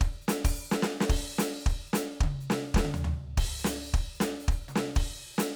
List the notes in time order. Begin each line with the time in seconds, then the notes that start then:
0.01 open hi-hat, kick
0.22 hi-hat pedal
0.28 closed hi-hat, snare
0.45 open hi-hat, kick
0.72 snare, hi-hat pedal
0.83 snare
1.01 snare
1.10 kick, crash
1.35 snare, hi-hat pedal
1.40 closed hi-hat
1.60 open hi-hat
1.66 open hi-hat, kick
1.87 hi-hat pedal
1.93 closed hi-hat, snare
2.21 kick, high tom
2.41 hi-hat pedal
2.50 snare
2.75 kick, snare
2.85 high tom
2.94 floor tom, hi-hat pedal
3.05 floor tom
3.38 kick, crash
3.59 hi-hat pedal
3.65 closed hi-hat, snare
3.84 open hi-hat
3.94 kick, snare
4.15 hi-hat pedal
4.20 closed hi-hat, snare
4.40 open hi-hat
4.48 open hi-hat, kick
4.69 hi-hat pedal, high tom
4.76 snare
4.96 kick, crash
5.34 hi-hat pedal
5.38 closed hi-hat, snare